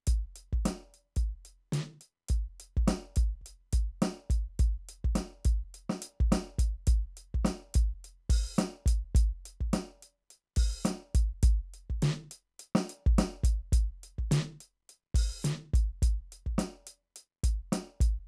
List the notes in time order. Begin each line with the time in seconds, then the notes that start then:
0.06 closed hi-hat, kick
0.36 closed hi-hat
0.53 kick
0.65 snare, closed hi-hat
0.94 closed hi-hat
1.16 kick, closed hi-hat
1.45 closed hi-hat
1.72 snare, closed hi-hat
2.01 closed hi-hat
2.28 closed hi-hat, kick
2.60 closed hi-hat
2.77 kick
2.88 snare, closed hi-hat
3.16 kick, closed hi-hat
3.41 kick
3.46 closed hi-hat
3.73 kick, closed hi-hat
4.02 snare, closed hi-hat
4.30 kick, closed hi-hat
4.59 kick, closed hi-hat
4.89 closed hi-hat
5.04 kick
5.15 snare, closed hi-hat
5.45 kick, closed hi-hat
5.74 closed hi-hat
5.90 snare
6.02 closed hi-hat
6.20 kick
6.32 snare, closed hi-hat
6.58 kick, closed hi-hat
6.87 closed hi-hat, kick
7.17 closed hi-hat
7.34 kick
7.45 snare, closed hi-hat
7.74 kick, closed hi-hat
8.04 closed hi-hat
8.29 kick, open hi-hat
8.56 snare, closed hi-hat, hi-hat pedal
8.86 kick, closed hi-hat
9.15 kick, closed hi-hat
9.45 closed hi-hat
9.60 kick
9.73 closed hi-hat, snare
10.02 closed hi-hat
10.30 closed hi-hat
10.56 kick, open hi-hat
10.84 snare, closed hi-hat, hi-hat pedal
10.91 snare
11.15 kick, closed hi-hat
11.43 closed hi-hat, kick
11.74 closed hi-hat
11.90 kick
12.02 snare, closed hi-hat
12.31 closed hi-hat
12.59 closed hi-hat
12.75 snare
12.89 closed hi-hat
13.06 kick
13.18 snare, closed hi-hat
13.43 kick, closed hi-hat
13.72 closed hi-hat, kick
14.03 closed hi-hat
14.18 kick
14.31 snare, closed hi-hat
14.60 closed hi-hat
14.89 closed hi-hat
15.14 kick, open hi-hat
15.42 snare, closed hi-hat, hi-hat pedal
15.73 kick, closed hi-hat
16.02 closed hi-hat, kick
16.32 closed hi-hat
16.46 kick
16.58 snare, closed hi-hat
16.87 closed hi-hat
17.16 closed hi-hat
17.43 kick, closed hi-hat
17.72 snare, closed hi-hat
18.00 kick, closed hi-hat